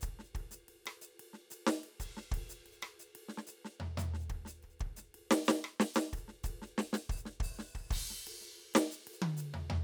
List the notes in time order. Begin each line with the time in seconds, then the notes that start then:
0.01 kick, hi-hat pedal, ride
0.19 snare
0.24 hi-hat pedal
0.35 kick, ride
0.51 snare, hi-hat pedal
0.68 ride
0.86 cross-stick, ride
1.01 hi-hat pedal
1.19 ride
1.33 snare
1.50 hi-hat pedal, ride
1.67 snare
1.83 crash
2.00 kick, hi-hat pedal, crash
2.17 snare
2.21 hi-hat pedal
2.32 kick, ride
2.49 hi-hat pedal
2.66 ride
2.72 hi-hat pedal
2.82 cross-stick, ride
2.99 hi-hat pedal
3.15 ride
3.28 snare
3.37 snare
3.47 hi-hat pedal, ride
3.65 snare
3.80 floor tom
3.97 floor tom, hi-hat pedal
4.14 snare
4.20 hi-hat pedal
4.30 kick, ride
4.45 snare, hi-hat pedal
4.63 kick, ride
4.70 hi-hat pedal
4.80 kick, ride
4.96 snare, hi-hat pedal
5.14 ride
5.31 snare
5.45 snare, hi-hat pedal
5.64 cross-stick
5.80 snare
5.94 snare, hi-hat pedal
6.13 kick, hi-hat pedal, ride
6.28 snare
6.44 kick, hi-hat pedal, ride
6.62 snare, hi-hat pedal
6.78 snare
6.93 snare, hi-hat pedal
7.09 open hi-hat, kick
7.17 hi-hat pedal
7.25 snare
7.40 open hi-hat, kick
7.59 snare
7.75 kick
7.90 kick, crash
8.10 snare
8.27 ride
8.41 snare, hi-hat pedal
8.60 ride
8.74 snare, ride
8.91 hi-hat pedal
9.07 ride
9.13 hi-hat pedal
9.22 high tom
9.37 hi-hat pedal, ride
9.54 floor tom
9.70 floor tom